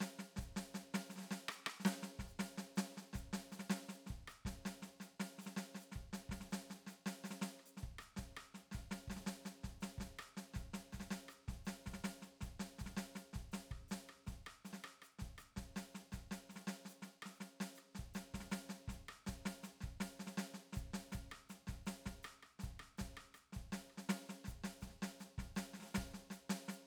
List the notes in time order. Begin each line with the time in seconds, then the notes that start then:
0.01 snare, hi-hat pedal
0.19 snare
0.37 kick, snare
0.41 hi-hat pedal
0.57 snare
0.75 snare, hi-hat pedal
0.94 snare
1.10 snare, hi-hat pedal
1.16 snare
1.18 snare
1.21 snare
1.22 snare
1.31 snare
1.49 cross-stick, hi-hat pedal
1.67 cross-stick
1.80 snare
1.85 snare
2.03 snare
2.19 kick, snare
2.28 hi-hat pedal
2.40 snare
2.58 snare
2.76 snare, hi-hat pedal
2.98 snare
3.14 kick, snare, hi-hat pedal
3.33 snare
3.52 snare, hi-hat pedal
3.60 snare
3.70 snare
3.89 snare, hi-hat pedal
4.07 kick, snare
4.28 cross-stick, hi-hat pedal
4.45 kick, snare
4.66 snare, hi-hat pedal
4.83 snare
5.00 snare, hi-hat pedal
5.20 snare
5.39 snare, hi-hat pedal
5.47 snare
5.57 snare
5.75 snare
5.81 hi-hat pedal
5.92 kick, snare
6.13 snare, hi-hat pedal
6.30 kick, snare
6.41 snare
6.51 snare, hi-hat pedal
6.71 snare
6.87 snare, hi-hat pedal
7.06 snare
7.24 snare, hi-hat pedal
7.31 snare
7.42 snare
7.60 cross-stick
7.66 hi-hat pedal
7.77 snare
7.83 kick
7.99 cross-stick, hi-hat pedal
8.17 kick, snare
8.37 cross-stick, hi-hat pedal
8.55 snare
8.72 snare, hi-hat pedal
8.74 kick, snare
8.92 snare
9.08 kick, snare
9.17 snare
9.27 snare
9.46 snare, hi-hat pedal
9.64 kick, snare
9.81 snare, hi-hat pedal
9.98 kick, snare
10.19 cross-stick, hi-hat pedal
10.37 snare
10.54 kick, snare, hi-hat pedal
10.74 snare
10.93 kick, snare, hi-hat pedal
11.00 snare
11.11 snare
11.29 cross-stick, hi-hat pedal
11.48 kick, snare
11.65 snare, hi-hat pedal
11.86 kick, snare
11.92 kick, snare
12.04 snare, hi-hat pedal
12.22 snare
12.41 kick, snare, hi-hat pedal
12.60 snare
12.79 kick, snare, hi-hat pedal
12.86 snare
12.97 snare
13.16 snare, hi-hat pedal
13.34 kick, snare
13.52 snare, hi-hat pedal
13.71 kick, cross-stick
13.89 snare, hi-hat pedal
14.09 cross-stick
14.27 kick, snare, hi-hat pedal
14.47 cross-stick
14.65 snare, hi-hat pedal
14.73 snare
14.84 cross-stick
15.02 cross-stick, hi-hat pedal
15.19 kick, snare
15.38 cross-stick, hi-hat pedal
15.57 kick, snare
15.76 snare, hi-hat pedal
15.95 snare
16.12 kick, snare, hi-hat pedal
16.31 snare
16.50 snare, hi-hat pedal
16.56 snare
16.68 snare
16.86 snare, hi-hat pedal
17.03 snare
17.23 cross-stick, snare
17.35 hi-hat pedal
17.41 snare
17.61 snare
17.76 cross-stick, hi-hat pedal
17.95 snare
17.99 kick
18.14 snare, hi-hat pedal
18.34 kick, snare
18.40 snare
18.52 snare, hi-hat pedal
18.70 snare
18.88 kick, snare, hi-hat pedal
19.09 cross-stick
19.27 kick, snare, hi-hat pedal
19.46 snare
19.64 snare, hi-hat pedal
19.81 kick, snare
20.01 snare, hi-hat pedal
20.20 snare
20.27 snare
20.38 snare, hi-hat pedal
20.54 snare
20.73 snare, hi-hat pedal
20.77 kick
20.94 snare
21.12 kick, snare, hi-hat pedal
21.32 cross-stick
21.50 snare, hi-hat pedal
21.67 kick, snare
21.86 snare, hi-hat pedal
22.06 kick, snare
22.23 cross-stick, hi-hat pedal
22.43 cross-stick
22.60 snare, hi-hat pedal
22.63 kick, snare
22.80 cross-stick
22.98 kick, snare, hi-hat pedal
23.17 cross-stick
23.35 cross-stick, hi-hat pedal
23.53 kick, snare
23.72 snare, hi-hat pedal
23.90 cross-stick
23.98 snare
24.09 snare, hi-hat pedal
24.29 snare
24.45 kick, snare, hi-hat pedal
24.64 snare
24.81 kick, snare, hi-hat pedal
24.90 snare
25.03 snare
25.20 snare, hi-hat pedal
25.38 kick, snare
25.56 snare, hi-hat pedal
25.74 snare
25.80 snare
25.82 snare
25.86 snare
25.95 kick, snare, hi-hat pedal
26.14 snare
26.31 snare, hi-hat pedal
26.50 snare
26.69 snare, hi-hat pedal